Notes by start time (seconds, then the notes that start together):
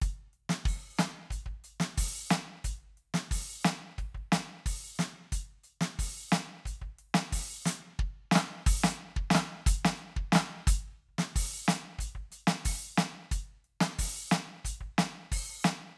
0.01 closed hi-hat, kick
0.33 closed hi-hat
0.49 snare
0.65 open hi-hat, kick
0.97 closed hi-hat, snare, hi-hat pedal
1.30 closed hi-hat, kick
1.46 kick
1.64 closed hi-hat
1.80 snare
1.98 open hi-hat, kick
2.29 closed hi-hat, snare, hi-hat pedal
2.64 closed hi-hat, kick
2.97 closed hi-hat
3.14 snare
3.31 open hi-hat, kick
3.63 closed hi-hat, snare, hi-hat pedal
3.98 kick, closed hi-hat
4.14 kick, crash
4.32 closed hi-hat, snare
4.66 open hi-hat, kick
4.96 closed hi-hat, snare, hi-hat pedal
5.32 closed hi-hat, kick
5.64 closed hi-hat
5.81 snare
5.99 open hi-hat, kick
6.32 closed hi-hat, snare, hi-hat pedal
6.65 closed hi-hat, kick
6.82 kick
6.99 closed hi-hat
7.14 snare
7.32 open hi-hat, kick
7.64 closed hi-hat, snare, hi-hat pedal
7.99 kick
8.31 snare
8.35 snare
8.66 open hi-hat, kick
8.84 snare
8.90 hi-hat pedal
9.16 kick
9.30 snare
9.35 snare
9.66 open hi-hat, kick
9.85 snare
9.96 hi-hat pedal
10.16 kick
10.32 snare
10.35 snare
10.67 closed hi-hat, kick
11.08 kick
11.18 snare
11.23 cross-stick
11.36 open hi-hat, kick
11.66 closed hi-hat, snare, hi-hat pedal
11.99 closed hi-hat, kick
12.15 kick
12.31 closed hi-hat, snare
12.47 snare
12.65 open hi-hat, kick
12.96 snare, closed hi-hat, hi-hat pedal
13.31 closed hi-hat, kick
13.64 closed hi-hat
13.81 snare
13.99 open hi-hat, kick
14.30 snare, closed hi-hat, hi-hat pedal
14.65 closed hi-hat, kick
14.81 kick
14.98 snare, closed hi-hat
15.32 open hi-hat, kick
15.63 snare, hi-hat pedal